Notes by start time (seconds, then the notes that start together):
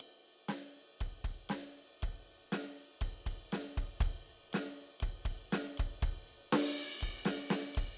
0.00 ride
0.48 snare, ride
1.00 kick, ride
1.24 kick, ride
1.49 snare, ride
1.79 ride
2.02 kick, ride
2.52 snare, ride
3.01 kick, ride
3.26 kick, ride
3.52 snare, ride
3.77 kick, ride
4.00 kick, ride
4.53 snare, ride
5.00 kick, ride
5.25 kick, ride
5.52 snare, ride
5.77 kick, ride
6.02 kick, ride
6.28 ride
6.52 snare, ride
6.78 ride
7.01 kick, ride
7.25 snare, ride
7.50 snare, ride
7.75 kick, ride